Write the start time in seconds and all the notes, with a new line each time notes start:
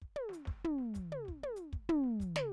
0.02 kick
0.16 high tom
0.30 snare, hi-hat pedal
0.46 kick, snare
0.64 floor tom
0.79 snare
0.95 kick, snare, hi-hat pedal
1.12 high tom
1.26 kick, snare
1.44 high tom
1.57 snare, hi-hat pedal
1.73 kick, snare
1.89 floor tom
2.04 snare
2.20 kick, snare, hi-hat pedal
2.36 snare, high tom